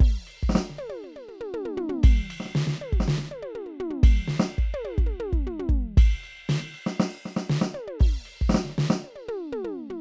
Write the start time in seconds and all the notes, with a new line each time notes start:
0.01 kick, crash
0.28 ride
0.43 kick
0.50 snare
0.56 snare
0.70 snare
0.79 high tom
0.90 high tom
1.04 high tom
1.16 high tom
1.29 mid tom
1.41 mid tom
1.54 mid tom
1.66 mid tom
1.77 floor tom
1.89 floor tom
2.04 kick, ride
2.31 ride
2.41 snare
2.46 snare
2.56 snare
2.68 snare
2.82 high tom
2.93 kick
3.01 snare
3.09 snare
3.19 snare
3.32 high tom
3.43 high tom
3.55 mid tom
3.66 mid tom
3.80 floor tom
3.91 floor tom
4.04 kick, ride
4.28 snare
4.40 snare
4.59 kick
4.74 high tom
4.85 high tom
4.99 kick
5.07 mid tom
5.20 mid tom
5.33 kick
5.47 floor tom
5.60 floor tom
5.70 kick
5.95 kick, snare, ride
6.24 ride
6.50 snare, ride
6.75 ride
6.87 snare
7.00 snare
7.11 open hi-hat
7.26 snare
7.37 snare
7.50 snare
7.62 snare
7.75 high tom
7.88 high tom
8.00 kick, crash
8.26 ride
8.42 kick
8.50 snare
8.55 snare
8.65 snare
8.71 snare
8.79 snare
8.91 snare
9.04 high tom
9.16 high tom
9.29 mid tom
9.53 mid tom
9.65 mid tom
9.90 floor tom